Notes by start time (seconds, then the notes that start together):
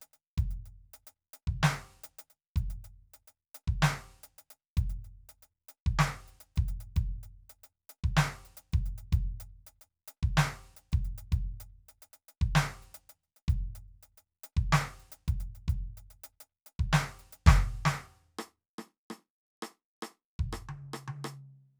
0.01 closed hi-hat
0.13 closed hi-hat
0.37 kick, closed hi-hat
0.51 closed hi-hat
0.65 closed hi-hat
0.93 closed hi-hat
1.07 closed hi-hat
1.33 closed hi-hat
1.47 kick
1.63 snare
1.75 closed hi-hat
2.04 closed hi-hat
2.19 closed hi-hat
2.30 closed hi-hat
2.56 kick, closed hi-hat
2.70 closed hi-hat
2.84 closed hi-hat
3.14 closed hi-hat
3.27 closed hi-hat
3.54 closed hi-hat
3.67 kick
3.82 snare
4.23 closed hi-hat
4.38 closed hi-hat
4.50 closed hi-hat
4.77 kick, closed hi-hat
4.90 closed hi-hat
5.04 closed hi-hat
5.29 closed hi-hat
5.42 closed hi-hat
5.68 closed hi-hat
5.86 kick
5.99 snare
6.28 closed hi-hat
6.40 closed hi-hat
6.56 kick, closed hi-hat
6.68 closed hi-hat
6.80 closed hi-hat
6.96 kick, closed hi-hat
7.23 closed hi-hat
7.49 closed hi-hat
7.63 closed hi-hat
7.89 closed hi-hat
8.04 kick
8.17 snare
8.45 closed hi-hat
8.57 closed hi-hat
8.72 kick, closed hi-hat
8.86 closed hi-hat
8.98 closed hi-hat
9.12 kick, closed hi-hat
9.40 closed hi-hat
9.66 closed hi-hat
9.81 closed hi-hat
10.08 closed hi-hat
10.23 kick
10.37 snare
10.63 closed hi-hat
10.76 closed hi-hat
10.92 kick, closed hi-hat
11.05 closed hi-hat
11.18 closed hi-hat
11.32 kick, closed hi-hat
11.60 closed hi-hat
11.88 closed hi-hat
12.02 closed hi-hat
12.13 closed hi-hat
12.28 closed hi-hat
12.41 kick
12.55 snare
12.82 closed hi-hat
12.94 closed hi-hat
13.09 closed hi-hat
13.23 closed hi-hat
13.36 closed hi-hat
13.48 closed hi-hat, kick
13.75 closed hi-hat
13.88 closed hi-hat
14.03 closed hi-hat
14.17 closed hi-hat
14.43 closed hi-hat
14.56 kick
14.72 snare
15.00 closed hi-hat
15.12 closed hi-hat
15.28 kick, closed hi-hat
15.40 closed hi-hat
15.55 closed hi-hat
15.68 kick, closed hi-hat
15.83 closed hi-hat
15.97 closed hi-hat
16.10 closed hi-hat
16.24 closed hi-hat
16.40 closed hi-hat
16.66 closed hi-hat
16.79 kick
16.93 snare
17.19 closed hi-hat
17.32 closed hi-hat
17.46 kick, snare
17.85 snare
18.39 cross-stick
18.78 cross-stick
19.10 cross-stick
19.62 cross-stick
20.02 cross-stick
20.39 kick
20.53 cross-stick
20.69 high tom
20.93 cross-stick
21.08 high tom
21.24 cross-stick